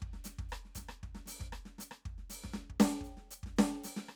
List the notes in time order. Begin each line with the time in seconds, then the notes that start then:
0.01 kick, snare
0.13 snare
0.24 snare, hi-hat pedal
0.39 kick, snare
0.49 cross-stick, hi-hat pedal
0.65 snare
0.75 kick, snare, hi-hat pedal
0.89 cross-stick
1.03 kick, snare
1.15 snare
1.26 snare
1.27 snare, hi-hat pedal
1.40 kick, snare
1.52 cross-stick, hi-hat pedal
1.65 snare
1.78 snare, hi-hat pedal
1.91 cross-stick
2.05 kick, snare
2.18 snare
2.30 snare, hi-hat pedal
2.44 kick, snare
2.54 snare
2.70 kick
2.80 snare, hi-hat pedal
3.01 kick, hi-hat pedal
3.17 snare
3.31 hi-hat pedal
3.43 kick, snare
3.56 snare, hi-hat pedal
3.73 snare
3.80 kick, hi-hat pedal
3.85 snare
3.97 snare
4.09 cross-stick